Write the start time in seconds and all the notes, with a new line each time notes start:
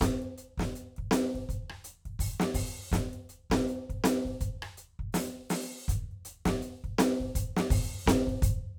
0.01 closed hi-hat, kick, snare, hi-hat pedal
0.22 closed hi-hat
0.38 closed hi-hat
0.58 kick, snare, closed hi-hat
0.76 closed hi-hat
0.97 kick, closed hi-hat
1.11 closed hi-hat, snare
1.35 kick, closed hi-hat
1.49 closed hi-hat, kick
1.70 cross-stick
1.85 closed hi-hat
2.06 kick, closed hi-hat
2.20 open hi-hat, kick
2.40 snare
2.55 open hi-hat, kick
2.92 open hi-hat, kick, snare, hi-hat pedal
3.14 closed hi-hat
3.30 closed hi-hat
3.50 kick, snare, closed hi-hat
3.57 snare
3.69 closed hi-hat
3.90 kick, closed hi-hat
4.04 closed hi-hat, snare
4.25 kick, closed hi-hat
4.41 closed hi-hat, kick
4.63 cross-stick, closed hi-hat
4.78 closed hi-hat
4.99 kick
5.13 open hi-hat, snare, hi-hat pedal
5.40 kick
5.50 open hi-hat, snare
5.70 open hi-hat
5.88 closed hi-hat, kick, snare, hi-hat pedal
6.12 closed hi-hat
6.25 closed hi-hat
6.46 kick, snare, closed hi-hat
6.62 closed hi-hat
6.84 kick, closed hi-hat
6.99 closed hi-hat, snare
7.20 kick, closed hi-hat
7.36 closed hi-hat, kick
7.57 snare
7.71 open hi-hat, kick
8.06 closed hi-hat, kick, snare, hi-hat pedal
8.27 kick, closed hi-hat
8.36 kick
8.43 closed hi-hat, kick